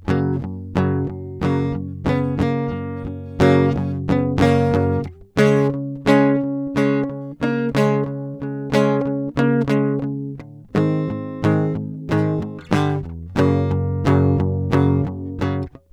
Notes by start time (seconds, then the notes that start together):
0.10 F#2 C#3 F#3 A#3
0.45 F#2
0.77 F#2 C#3 F#3
1.06 F#2
1.43 F#2 C#3 F#3
1.47 A#3
1.74 F#2
2.06 F#2 C#3 B3
2.12 C#4
2.42 C#3 A#3 C#4
2.71 F#2 C#3
3.06 F#2 C#3
3.41 F#2 C#3 F#3 A#3
3.46 C#4
3.68 C#3
3.77 F#2
4.10 F#2 C#3 B3
4.15 C#4
4.39 F#2 C#3
4.44 A#3 C#4
4.75 F#2 C#3 F#3
5.39 C#3 G#3 C#4
5.71 C#3 G#3
6.08 C#3 G#3 C#4
6.42 C#3
6.77 C#3 G#3 C#4
7.05 G#3
7.11 C#3
7.43 C#3 A#3
7.76 C#3 G#3 C#4
8.05 C#3 G#3
8.43 C#3 G#3
8.74 C#3 G#3 C#4
9.07 C#3 G#3
9.38 C#3 A#3
9.69 C#3 G#3 C#4
10.04 C#3 G#3
10.41 D3
10.76 G#2 D#3 G#3
10.80 C4
11.10 G#2 D#3
11.45 G#2 D#3 G#3 C4
11.76 G#2 D#3
12.10 G#2 D#3 G#3 C4
12.40 G#2
12.44 D#3
12.62 B3
12.73 G2 D3 G3
13.05 E2
13.37 F#2 C#3 F#3 A#3
13.72 F#2 C#3
14.07 F#2 C#3 F#3 A#3
14.40 F#2 C#3
14.74 F#2 C#3 F#3 A#3
15.07 F#2 C#3
15.43 F#2 C#3 F#3